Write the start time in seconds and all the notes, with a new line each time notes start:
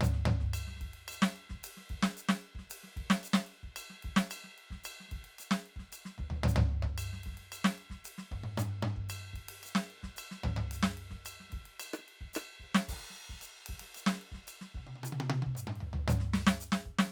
0.01 hi-hat pedal, floor tom
0.13 snare
0.26 floor tom
0.40 kick, snare
0.54 hi-hat pedal, ride bell
0.67 snare
0.76 snare
0.81 kick, ride
0.86 kick
0.94 ride
1.08 hi-hat pedal, ride bell
1.22 snare
1.29 snare
1.36 ride
1.50 kick, snare
1.56 kick
1.64 hi-hat pedal, ride
1.77 snare
1.90 kick, ride
1.97 kick
2.03 snare
2.17 hi-hat pedal, ride
2.29 snare
2.42 ride
2.55 kick, snare
2.70 hi-hat pedal, ride
2.84 snare
2.97 kick, ride
3.03 kick
3.10 snare
3.23 hi-hat pedal, ride bell
3.34 snare
3.47 ride
3.63 kick
3.76 hi-hat pedal, ride bell
3.90 snare
4.03 kick, ride
4.10 kick
4.17 snare
4.30 hi-hat pedal, ride bell
4.44 snare
4.58 ride
4.71 kick, snare
4.84 hi-hat pedal, ride bell
5.00 snare
5.09 kick, snare, ride
5.18 kick
5.24 ride
5.39 hi-hat pedal, ride bell
5.51 snare
5.66 ride
5.76 kick, snare
5.92 hi-hat pedal, ride bell
6.05 snare
6.18 kick, floor tom
6.30 floor tom
6.44 floor tom
6.48 hi-hat pedal
6.56 floor tom
6.69 floor tom
6.83 kick, floor tom
6.98 hi-hat pedal, ride bell
7.13 snare
7.24 kick, snare, ride
7.32 kick, snare
7.37 snare, ride
7.52 hi-hat pedal, ride bell
7.65 snare
7.78 ride
7.90 kick, snare
8.05 hi-hat pedal, ride
8.18 snare
8.31 kick, mid tom
8.44 mid tom
8.58 hi-hat pedal, mid tom
8.83 mid tom
8.96 kick
9.09 hi-hat pedal, ride bell
9.20 snare
9.26 snare
9.33 kick, ride
9.49 ride
9.63 hi-hat pedal, ride bell
9.75 snare
9.90 ride
10.03 kick, snare
10.17 hi-hat pedal, ride bell
10.31 snare
10.44 kick, floor tom
10.51 kick
10.57 floor tom
10.71 hi-hat pedal, ride
10.83 snare
10.97 ride
11.11 kick, snare
11.25 hi-hat pedal, ride bell
11.40 snare
11.50 kick, snare, ride
11.55 kick, snare
11.61 snare
11.65 snare, ride
11.69 snare
11.80 hi-hat pedal, ride bell
11.94 cross-stick
11.99 cross-stick
12.08 ride
12.21 kick
12.34 cross-stick, hi-hat pedal, ride bell
12.60 kick, ride
12.75 snare
12.89 kick, hi-hat pedal, crash
12.95 kick
13.10 snare
13.29 kick, snare
13.34 kick
13.42 hi-hat pedal, ride bell
13.66 kick, ride
13.74 kick
13.80 snare, ride
13.95 hi-hat pedal, ride bell
14.07 snare
14.13 snare
14.21 ride
14.32 kick, snare
14.37 kick
14.47 hi-hat pedal, ride bell
14.61 snare
14.75 kick, high tom
14.80 kick
14.87 high tom
14.96 high tom
15.03 hi-hat pedal, high tom
15.13 high tom
15.20 high tom
15.30 high tom
15.42 kick, high tom
15.55 hi-hat pedal, mid tom
15.67 mid tom
15.76 ride
15.81 floor tom
15.93 floor tom
16.08 hi-hat pedal, floor tom
16.20 snare
16.33 snare, hi-hat pedal
16.47 snare
16.60 hi-hat pedal
16.72 snare
16.86 kick
16.99 snare
17.07 snare